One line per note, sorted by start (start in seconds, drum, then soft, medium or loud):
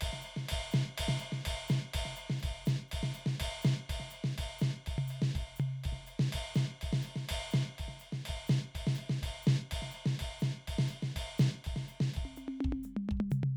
0.01 kick soft
0.01 ride bell loud
0.08 kick soft
0.13 snare soft
0.22 hi-hat pedal medium
0.26 ride soft
0.37 snare medium
0.49 kick soft
0.49 ride bell loud
0.71 snare loud
0.71 hi-hat pedal medium
0.98 kick soft
0.98 ride loud
1.05 kick soft
1.05 snare medium
1.19 hi-hat pedal medium
1.19 ride soft
1.32 snare medium
1.45 kick soft
1.45 ride bell loud
1.53 kick soft
1.68 snare medium
1.68 hi-hat pedal medium
1.94 kick soft
1.94 ride bell loud
2.01 kick soft
2.06 snare soft
2.16 hi-hat pedal medium
2.16 ride soft
2.30 snare medium
2.39 hi-hat pedal soft
2.39 ride bell medium
2.44 kick soft
2.50 kick soft
2.66 snare medium
2.66 hi-hat pedal medium
2.88 hi-hat pedal soft
2.88 ride bell medium
2.93 kick soft
3.03 snare medium
3.14 hi-hat pedal medium
3.14 ride soft
3.26 snare medium
3.40 kick soft
3.40 ride bell loud
3.47 kick soft
3.62 snare loud
3.62 hi-hat pedal medium
3.90 kick soft
3.90 ride bell medium
3.95 kick soft
4.00 snare soft
4.10 hi-hat pedal medium
4.10 ride soft
4.24 snare medium
4.32 hi-hat pedal soft
4.38 kick soft
4.38 ride bell medium
4.59 snare medium
4.59 hi-hat pedal medium
4.86 kick soft
4.86 ride bell medium
4.93 kick soft
4.98 floor tom loud
5.08 hi-hat pedal medium
5.08 ride bell soft
5.22 snare medium
5.35 kick soft
5.35 ride bell medium
5.42 kick soft
5.56 hi-hat pedal medium
5.60 floor tom loud
5.84 kick soft
5.84 ride bell medium
5.92 kick soft
5.92 snare soft
6.01 snare soft
6.07 hi-hat pedal medium
6.07 ride soft
6.20 snare medium
6.33 kick soft
6.33 ride bell loud
6.55 snare loud
6.55 hi-hat pedal medium
6.81 kick soft
6.81 ride bell medium
6.89 kick soft
6.93 snare medium
7.02 hi-hat pedal medium
7.02 ride medium
7.16 snare medium
7.29 kick soft
7.29 ride bell loud
7.51 snare loud
7.51 hi-hat pedal medium
7.78 kick soft
7.78 ride medium
7.85 kick soft
7.85 snare soft
7.99 hi-hat pedal medium
7.99 ride soft
8.13 snare medium
8.26 kick soft
8.26 ride bell medium
8.47 snare loud
8.47 hi-hat pedal medium
8.75 kick soft
8.75 ride bell medium
8.80 kick soft
8.87 snare medium
8.95 hi-hat pedal medium
8.95 ride soft
9.10 snare medium
9.23 kick soft
9.23 ride bell medium
9.29 kick soft
9.43 hi-hat pedal medium
9.47 snare loud
9.71 kick soft
9.71 ride bell loud
9.78 kick soft
9.82 snare soft
9.91 hi-hat pedal medium
9.91 ride soft
10.06 snare medium
10.19 kick soft
10.19 ride bell medium
10.27 kick soft
10.40 snare medium
10.40 hi-hat pedal medium
10.68 kick soft
10.68 ride bell medium
10.74 kick soft
10.79 snare medium
10.88 hi-hat pedal medium
10.88 ride soft
11.03 snare medium
11.16 kick soft
11.16 ride bell medium
11.38 snare loud
11.38 hi-hat pedal medium
11.47 snare soft
11.64 kick soft
11.64 ride bell medium
11.73 kick soft
11.73 snare medium
11.88 hi-hat pedal medium
11.88 ride soft
12.01 snare medium
12.14 kick soft
12.14 ride medium
12.23 kick soft
12.23 high tom soft
12.36 hi-hat pedal medium
12.36 high tom medium
12.48 high tom medium
12.61 kick soft
12.61 high tom loud
12.72 kick soft
12.72 high tom loud
12.83 hi-hat pedal medium
12.83 mid tom soft
12.97 mid tom loud
13.09 kick soft
13.09 mid tom loud
13.17 kick soft
13.17 mid tom loud
13.31 floor tom loud
13.31 hi-hat pedal medium
13.44 floor tom loud